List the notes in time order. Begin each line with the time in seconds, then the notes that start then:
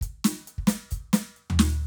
0.01 kick, closed hi-hat
0.24 closed hi-hat, snare
0.47 closed hi-hat
0.58 kick
0.67 closed hi-hat, snare
0.91 closed hi-hat, kick
1.13 closed hi-hat, snare
1.33 snare, closed hi-hat
1.50 floor tom
1.59 snare
1.74 snare